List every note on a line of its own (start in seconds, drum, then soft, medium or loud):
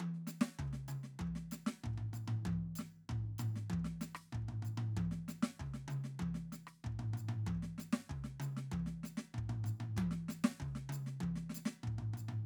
0.00 high tom medium
0.14 snare soft
0.27 snare soft
0.27 percussion medium
0.41 snare medium
0.59 kick soft
0.59 mid tom medium
0.67 kick soft
0.73 snare soft
0.88 mid tom medium
0.88 percussion soft
1.03 snare soft
1.19 kick soft
1.19 high tom medium
1.27 kick soft
1.35 snare soft
1.51 snare soft
1.51 percussion medium
1.66 snare medium
1.84 kick soft
1.84 floor tom medium
1.93 kick soft
1.98 floor tom medium
2.13 floor tom medium
2.13 percussion soft
2.28 floor tom medium
2.45 kick soft
2.45 high tom loud
2.52 kick soft
2.75 snare soft
2.75 percussion medium
3.09 kick soft
3.09 floor tom medium
3.38 floor tom medium
3.38 percussion medium
3.56 snare soft
3.70 kick soft
3.70 high tom loud
3.79 kick soft
3.84 snare soft
4.01 snare soft
4.01 percussion medium
4.15 cross-stick medium
4.32 kick soft
4.32 floor tom medium
4.42 kick soft
4.48 floor tom medium
4.62 floor tom medium
4.62 percussion soft
4.77 floor tom medium
4.97 kick soft
4.97 high tom loud
5.05 kick soft
5.11 snare soft
5.28 snare soft
5.28 percussion soft
5.42 snare medium
5.59 kick soft
5.59 mid tom medium
5.66 kick soft
5.74 snare soft
5.88 mid tom loud
5.88 percussion soft
6.04 snare soft
6.19 kick soft
6.19 high tom medium
6.34 snare soft
6.52 snare soft
6.52 percussion soft
6.67 cross-stick soft
6.84 kick soft
6.84 floor tom medium
6.92 kick soft
6.99 floor tom medium
7.13 floor tom medium
7.13 percussion soft
7.29 floor tom medium
7.46 kick soft
7.46 high tom medium
7.54 kick soft
7.57 kick soft
7.62 snare soft
7.78 snare soft
7.78 percussion soft
7.93 snare medium
8.09 kick soft
8.09 mid tom medium
8.24 snare soft
8.40 mid tom loud
8.40 percussion soft
8.57 snare soft
8.71 kick soft
8.71 high tom loud
8.79 kick soft
8.86 snare soft
9.03 snare soft
9.03 percussion soft
9.17 snare medium
9.34 kick soft
9.34 floor tom medium
9.49 floor tom medium
9.64 floor tom medium
9.64 percussion soft
9.80 floor tom medium
9.96 kick soft
9.96 high tom loud
10.03 kick soft
10.11 snare soft
10.28 snare soft
10.28 percussion medium
10.44 snare medium
10.60 kick soft
10.60 mid tom medium
10.68 kick soft
10.75 snare soft
10.89 mid tom medium
10.89 percussion medium
11.06 snare soft
11.20 kick soft
11.20 high tom loud
11.36 snare soft
11.49 snare soft
11.54 snare soft
11.54 percussion medium
11.65 snare medium
11.83 kick soft
11.83 floor tom medium
11.98 floor tom medium
12.13 floor tom medium
12.13 percussion soft
12.28 floor tom medium